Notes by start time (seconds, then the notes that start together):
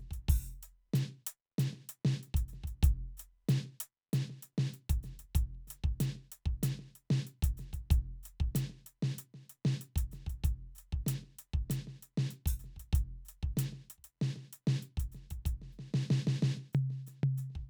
0.01 snare
0.12 kick, closed hi-hat
0.29 open hi-hat, kick
0.63 open hi-hat, hi-hat pedal
0.94 snare, closed hi-hat
1.12 snare
1.27 closed hi-hat
1.59 snare, closed hi-hat
1.74 snare
1.90 closed hi-hat
2.06 snare
2.24 closed hi-hat
2.28 snare
2.35 open hi-hat, kick
2.49 hi-hat pedal
2.54 snare
2.64 kick, closed hi-hat
2.84 open hi-hat, kick
3.18 closed hi-hat, hi-hat pedal
3.50 snare, closed hi-hat
3.66 snare
3.81 closed hi-hat
4.14 snare, closed hi-hat
4.31 snare
4.43 closed hi-hat
4.59 snare
4.74 closed hi-hat
4.90 open hi-hat, kick
5.04 snare, hi-hat pedal
5.20 kick, closed hi-hat
5.36 open hi-hat, kick
5.56 kick
5.68 snare, closed hi-hat, hi-hat pedal
5.85 kick
6.01 closed hi-hat, snare
6.16 snare
6.33 closed hi-hat
6.46 kick
6.64 closed hi-hat, snare
6.80 snare
6.96 closed hi-hat
7.11 snare
7.28 closed hi-hat
7.43 open hi-hat, kick
7.58 snare, hi-hat pedal
7.74 kick, closed hi-hat
7.91 open hi-hat, kick
8.24 closed hi-hat, hi-hat pedal
8.41 kick
8.56 snare, closed hi-hat
8.70 snare
8.87 closed hi-hat
9.03 snare
9.19 closed hi-hat
9.35 snare
9.50 closed hi-hat
9.66 snare
9.82 closed hi-hat
9.97 open hi-hat, kick
10.12 snare, hi-hat pedal
10.27 kick, closed hi-hat
10.45 open hi-hat, kick
10.76 closed hi-hat, hi-hat pedal
10.93 kick
11.07 closed hi-hat, snare
11.24 snare
11.39 closed hi-hat
11.54 kick
11.71 closed hi-hat, snare
11.88 snare
12.03 closed hi-hat
12.18 snare
12.31 closed hi-hat
12.47 kick, open hi-hat
12.60 hi-hat pedal
12.65 snare
12.77 kick, closed hi-hat
12.94 open hi-hat, kick
13.26 closed hi-hat, hi-hat pedal
13.44 kick
13.58 snare, closed hi-hat
13.73 snare
13.91 closed hi-hat
13.99 kick
14.05 closed hi-hat
14.22 snare
14.37 snare
14.54 closed hi-hat
14.68 snare
14.83 closed hi-hat
14.98 open hi-hat, kick
15.13 snare, hi-hat pedal
15.31 kick, closed hi-hat
15.46 open hi-hat, kick
15.63 snare
15.73 hi-hat pedal
15.80 snare
15.95 snare
16.11 snare
16.28 snare
16.43 snare
16.57 snare
16.74 floor tom, hi-hat pedal
16.91 snare
17.07 snare, hi-hat pedal
17.24 floor tom
17.38 hi-hat pedal
17.51 snare
17.56 kick